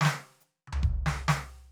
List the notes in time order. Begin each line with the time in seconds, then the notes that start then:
0.01 snare
0.05 snare
0.40 hi-hat pedal
0.67 high tom
0.73 floor tom
0.83 kick
1.06 snare
1.28 snare